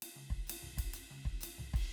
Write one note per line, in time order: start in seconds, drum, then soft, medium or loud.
0.02 hi-hat pedal soft
0.02 ride medium
0.16 high tom soft
0.30 kick soft
0.47 hi-hat pedal soft
0.47 ride loud
0.62 floor tom soft
0.77 kick soft
0.77 ride medium
0.93 hi-hat pedal medium
0.93 ride medium
1.10 high tom soft
1.25 kick soft
1.41 hi-hat pedal medium
1.41 ride medium
1.58 floor tom soft
1.73 kick medium
1.73 ride medium